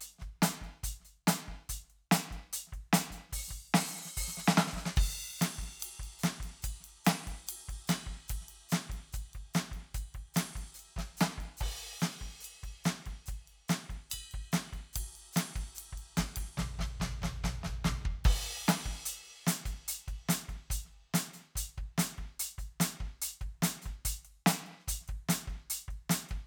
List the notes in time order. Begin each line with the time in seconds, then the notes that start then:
0.01 closed hi-hat
0.19 kick, snare, closed hi-hat
0.42 closed hi-hat, snare
0.61 kick, closed hi-hat
0.84 closed hi-hat, kick
1.00 snare
1.05 closed hi-hat
1.27 closed hi-hat, snare
1.48 kick
1.69 closed hi-hat, kick
1.82 kick, snare
1.90 closed hi-hat
2.12 closed hi-hat, snare
2.31 kick, snare, closed hi-hat
2.52 closed hi-hat, snare
2.67 snare
2.72 kick, closed hi-hat
2.93 closed hi-hat, snare
3.11 closed hi-hat, kick
3.29 open hi-hat, kick, snare
3.48 kick, snare
3.53 open hi-hat
3.74 open hi-hat, snare
3.94 open hi-hat
4.05 snare
4.17 open hi-hat, kick
4.28 snare
4.37 snare
4.48 snare
4.57 snare
4.67 snare
4.73 kick, snare
4.86 snare
4.97 kick, crash
5.38 snare, hi-hat pedal, ride
5.58 kick, ride
5.80 hi-hat pedal, ride
5.99 kick, ride
6.19 hi-hat pedal
6.24 snare, ride
6.40 kick, ride
6.62 kick, hi-hat pedal, ride bell
6.80 snare
6.84 ride
7.05 snare, hi-hat pedal, ride
7.27 kick, ride
7.47 hi-hat pedal, ride
7.69 kick, ride
7.87 snare, hi-hat pedal, ride bell
8.07 kick
8.28 kick, hi-hat pedal, ride
8.41 snare
8.49 ride
8.69 snare, hi-hat pedal, ride bell
8.90 kick, ride
9.13 kick, hi-hat pedal, ride bell
9.34 kick, ride
9.54 snare, hi-hat pedal, ride bell
9.72 kick, ride
9.94 kick, hi-hat pedal, ride bell
10.14 kick, ride
10.34 snare, hi-hat pedal, ride
10.55 kick, ride
10.74 hi-hat pedal
10.79 ride bell
10.96 kick, snare, ride
11.17 snare, hi-hat pedal, ride bell
11.38 kick, ride
11.57 kick, hi-hat pedal, crash
11.78 ride
12.00 snare, hi-hat pedal, ride bell
12.21 kick, ride
12.41 hi-hat pedal
12.45 ride bell
12.63 kick, ride
12.84 snare, hi-hat pedal, ride bell
13.06 kick, ride
13.26 kick, hi-hat pedal, ride bell
13.48 ride
13.68 snare, hi-hat pedal, ride bell
13.89 kick, ride
14.10 kick, hi-hat pedal, ride bell
14.31 kick, ride
14.52 snare, hi-hat pedal, ride bell
14.73 kick, ride
14.93 kick, hi-hat pedal, ride
15.15 ride
15.33 snare, hi-hat pedal
15.37 ride
15.56 kick, ride
15.75 hi-hat pedal, ride
15.93 kick
15.98 ride
16.17 kick, snare, ride bell
16.36 kick, ride
16.57 kick, snare, floor tom
16.79 kick, snare, floor tom
17.00 kick, snare, floor tom
17.22 kick, snare, floor tom
17.44 kick, snare, floor tom
17.64 kick, snare, floor tom
17.85 kick, snare, floor tom
18.05 kick
18.25 kick, crash
18.67 snare, hi-hat pedal, ride
18.86 kick
19.06 closed hi-hat
19.25 closed hi-hat
19.47 closed hi-hat, snare
19.66 closed hi-hat, kick
19.88 closed hi-hat
20.08 kick, closed hi-hat
20.29 closed hi-hat, snare
20.49 kick, closed hi-hat
20.70 closed hi-hat, kick
20.85 snare
20.91 closed hi-hat
21.14 closed hi-hat, snare
21.34 closed hi-hat
21.56 closed hi-hat, kick
21.68 snare
21.78 kick, closed hi-hat
21.98 closed hi-hat, snare
22.18 kick, closed hi-hat
22.40 closed hi-hat
22.58 closed hi-hat, kick
22.80 closed hi-hat, snare
23.00 kick
23.22 closed hi-hat
23.41 kick, closed hi-hat
23.62 closed hi-hat, snare
23.82 closed hi-hat, kick
24.05 closed hi-hat, kick
24.25 closed hi-hat
24.46 closed hi-hat, snare
24.66 closed hi-hat
24.79 snare
24.88 closed hi-hat, kick
25.01 snare
25.08 kick, closed hi-hat
25.29 closed hi-hat, snare
25.47 kick, closed hi-hat
25.70 closed hi-hat
25.88 kick, closed hi-hat
26.10 closed hi-hat, snare
26.29 kick, closed hi-hat